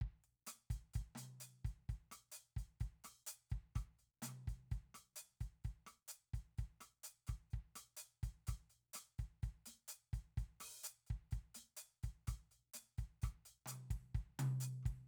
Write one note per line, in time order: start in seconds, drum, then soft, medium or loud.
0.01 kick soft
0.24 closed hi-hat soft
0.47 open hi-hat soft
0.47 cross-stick soft
0.47 snare soft
0.47 hi-hat pedal medium
0.70 closed hi-hat soft
0.70 kick soft
0.76 kick soft
0.94 closed hi-hat soft
0.94 kick soft
1.01 kick soft
1.15 closed hi-hat soft
1.15 snare soft
1.15 mid tom soft
1.40 closed hi-hat soft
1.40 hi-hat pedal medium
1.65 closed hi-hat soft
1.65 kick soft
1.89 closed hi-hat soft
1.89 kick soft
2.11 closed hi-hat soft
2.11 cross-stick soft
2.31 closed hi-hat soft
2.31 hi-hat pedal medium
2.56 closed hi-hat soft
2.56 kick soft
2.80 closed hi-hat soft
2.80 kick soft
3.04 open hi-hat medium
3.04 cross-stick soft
3.26 closed hi-hat soft
3.26 hi-hat pedal medium
3.50 closed hi-hat soft
3.50 kick soft
3.75 open hi-hat soft
3.75 kick soft
3.75 cross-stick soft
3.75 snare soft
3.99 closed hi-hat soft
4.22 closed hi-hat soft
4.22 snare soft
4.22 hi-hat pedal medium
4.22 mid tom soft
4.28 cross-stick soft
4.47 closed hi-hat soft
4.47 kick soft
4.71 closed hi-hat soft
4.71 kick soft
4.94 closed hi-hat soft
4.94 cross-stick soft
5.16 closed hi-hat soft
5.16 hi-hat pedal medium
5.40 closed hi-hat soft
5.40 kick soft
5.64 closed hi-hat soft
5.64 kick soft
5.86 closed hi-hat soft
5.86 cross-stick soft
5.86 snare soft
6.08 closed hi-hat soft
6.08 hi-hat pedal medium
6.33 closed hi-hat soft
6.33 kick soft
6.58 closed hi-hat soft
6.58 kick soft
6.80 closed hi-hat soft
6.80 cross-stick soft
7.03 closed hi-hat soft
7.03 hi-hat pedal medium
7.27 closed hi-hat soft
7.27 kick soft
7.27 cross-stick soft
7.50 open hi-hat soft
7.50 kick soft
7.75 closed hi-hat soft
7.75 cross-stick soft
7.97 closed hi-hat soft
7.97 hi-hat pedal medium
8.23 closed hi-hat soft
8.23 kick soft
8.47 closed hi-hat soft
8.47 kick soft
8.47 cross-stick soft
8.70 closed hi-hat soft
8.93 closed hi-hat soft
8.93 cross-stick soft
8.93 hi-hat pedal medium
9.18 closed hi-hat soft
9.18 kick soft
9.43 closed hi-hat soft
9.43 kick soft
9.66 closed hi-hat medium
9.66 snare soft
9.88 closed hi-hat soft
9.88 hi-hat pedal medium
10.13 closed hi-hat soft
10.13 kick soft
10.37 closed hi-hat soft
10.37 kick soft
10.60 open hi-hat medium
10.60 cross-stick soft
10.60 snare soft
10.83 hi-hat pedal medium
11.06 closed hi-hat soft
11.06 kick soft
11.31 closed hi-hat soft
11.31 kick soft
11.54 closed hi-hat medium
11.54 snare soft
11.77 closed hi-hat soft
11.77 hi-hat pedal medium
12.03 closed hi-hat soft
12.03 kick soft
12.27 closed hi-hat soft
12.27 kick soft
12.27 cross-stick soft
12.27 snare soft
12.33 kick soft
12.51 closed hi-hat soft
12.74 snare soft
12.74 hi-hat pedal medium
12.98 closed hi-hat soft
12.98 kick soft
13.22 open hi-hat soft
13.22 kick soft
13.22 cross-stick soft
13.22 snare soft
13.45 closed hi-hat soft
13.66 cross-stick soft
13.66 hi-hat pedal medium
13.66 mid tom soft
13.71 cross-stick soft
13.90 kick soft
13.90 closed hi-hat soft
14.15 closed hi-hat soft
14.15 kick soft
14.39 closed hi-hat medium
14.39 mid tom loud
14.60 closed hi-hat soft
14.60 hi-hat pedal medium
14.83 kick soft
14.83 cross-stick soft
14.83 closed hi-hat soft